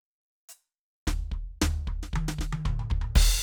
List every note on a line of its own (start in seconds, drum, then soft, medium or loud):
0.49 hi-hat pedal medium
1.07 kick medium
1.07 snare medium
1.07 floor tom medium
1.32 kick medium
1.32 floor tom soft
1.62 kick medium
1.62 snare loud
1.62 floor tom loud
1.87 kick medium
1.87 floor tom medium
2.03 snare soft
2.13 kick medium
2.13 high tom loud
2.28 snare medium
2.39 kick medium
2.39 snare medium
2.53 high tom loud
2.65 kick medium
2.65 mid tom loud
2.79 mid tom medium
2.90 kick medium
2.90 floor tom medium
3.01 mid tom medium
3.15 kick loud
3.15 crash loud